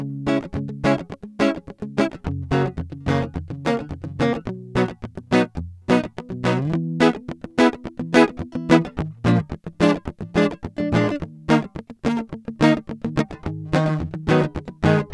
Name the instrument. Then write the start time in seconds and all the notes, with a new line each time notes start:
acoustic guitar
0.01 C#3 G#3
0.28 G#3 C#4 E4
0.55 C#3 G#3 C#4
0.69 C#3 G#3
0.85 G#3 C#4 E4
1.41 G#3 C#4 E4
1.84 C#3
1.99 G#3 C#4 E4
2.29 C#3
2.52 C#3 F#3 A#3
3.09 C#3 A#3 C#4
3.23 C#4
3.66 C#3 A#3 C#4
3.81 A#3
4.21 C#3 A#3 C#4
4.34 A#3
4.46 B2 F#3
4.76 A#2 F#3 B3 D#4
5.33 B2 F#3 B3 D#4
5.90 B2 F#3 B3 D#4
6.33 B2
6.46 F#3 B3 D#4
6.60 B3
6.75 E3 B3
7.01 B3 E4 G#4
7.59 B3 E4 G#4
8.01 E3
8.15 B3 E4 G#4
8.53 E3 E4
8.72 B3 G#4
9.02 D#3
9.26 A#2 F3 G#3 D4
9.81 F3 G#3 D4
10.26 D4
10.37 F3 G#3
10.78 D4
10.93 A#2 F3 G#3
10.97 D4
11.13 D4
11.21 D#3 A#3
11.50 D#3 A#3 D#4
12.07 A#3
12.62 D#3 A#3 D#4
13.18 D3 A3 D#4
13.48 D#3
13.74 D#3 D#4
13.88 D#4
14.03 D#3
14.15 D#3
14.28 G#2 D#3 F#3 B3
14.32 D#4
14.85 G#2 D#3 G#3 D#4